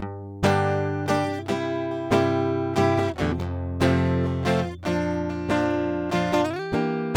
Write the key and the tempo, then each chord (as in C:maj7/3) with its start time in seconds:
D minor, 142 BPM
0.00 G:min
1.69 C:7/5
3.38 F:maj
5.07 A#:maj/5
6.76 E:hdim7(11)/4